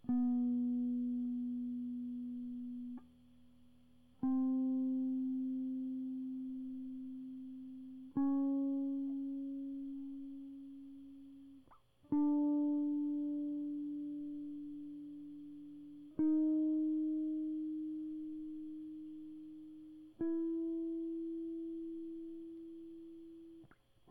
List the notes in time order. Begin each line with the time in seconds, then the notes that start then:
0.09 B3
4.24 C4
8.17 C#4
12.12 D4
16.19 D#4
20.21 E4